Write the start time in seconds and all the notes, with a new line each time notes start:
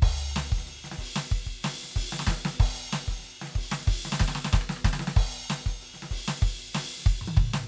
0.01 kick, crash
0.03 kick
0.36 snare, hi-hat pedal, ride
0.53 kick
0.59 snare
0.67 snare, hi-hat pedal, ride
0.85 snare
0.92 snare
0.99 kick, hi-hat pedal, ride
1.17 snare
1.31 kick, ride
1.47 kick, ride
1.63 snare, hi-hat pedal, ride
1.83 snare
1.91 snare
1.96 kick, snare, hi-hat pedal, ride
2.00 snare
2.13 snare
2.20 snare
2.27 kick, snare, hi-hat pedal
2.31 snare
2.46 snare
2.60 kick, hi-hat pedal, crash
2.93 snare, hi-hat pedal, ride
3.09 kick, snare
3.18 snare
3.21 snare, hi-hat pedal, ride
3.42 snare
3.47 snare
3.51 snare, hi-hat pedal
3.56 kick, ride
3.72 snare
3.81 snare
3.87 kick, snare, ride
4.06 snare
4.13 snare
4.20 kick, snare
4.29 snare
4.36 snare
4.45 snare
4.53 kick, snare, hi-hat pedal
4.62 cross-stick
4.70 snare
4.77 cross-stick
4.84 kick, snare, hi-hat pedal
4.94 snare
5.00 snare
5.08 snare
5.17 kick, hi-hat pedal, crash
5.50 snare, hi-hat pedal, ride
5.67 kick, snare
5.82 hi-hat pedal, ride
5.95 snare
6.03 snare
6.12 kick, hi-hat pedal, ride
6.29 snare
6.42 kick, hi-hat pedal, ride
6.58 ride
6.73 snare, hi-hat pedal, ride
6.98 snare
7.01 snare
7.06 kick, snare, hi-hat pedal
7.22 mid tom
7.28 high tom
7.37 kick, hi-hat pedal, mid tom
7.54 snare